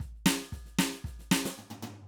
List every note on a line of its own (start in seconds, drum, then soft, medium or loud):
0.00 kick soft
0.00 snare soft
0.15 snare soft
0.26 snare loud
0.42 snare soft
0.52 kick soft
0.52 snare soft
0.66 snare soft
0.79 snare loud
0.93 snare soft
1.04 kick soft
1.04 snare soft
1.19 snare soft
1.31 snare loud
1.45 snare loud
1.58 floor tom medium
1.70 floor tom loud
1.82 floor tom loud